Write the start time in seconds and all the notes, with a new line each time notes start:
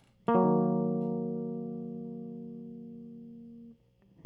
0.28 A#3
0.35 F#3
0.44 D#3
4.19 F3